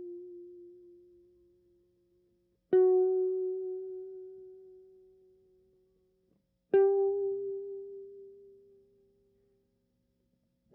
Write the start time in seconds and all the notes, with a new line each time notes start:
2.74 F#4
6.75 G4